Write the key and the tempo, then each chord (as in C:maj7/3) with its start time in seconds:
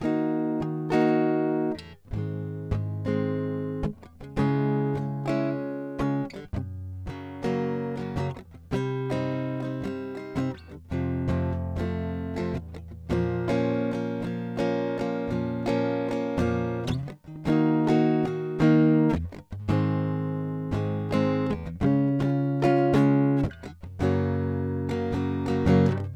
A# minor, 110 BPM
0.00 D#:min(b9)/b2
2.18 G#:maj
4.36 C#:min
6.54 F#:maj
8.73 C:maj(#9)/3
10.91 F:maj
13.09 A#:min(#11)/b5
17.45 D#:min
19.64 G#:maj
21.82 C#:maj
24.00 F#:maj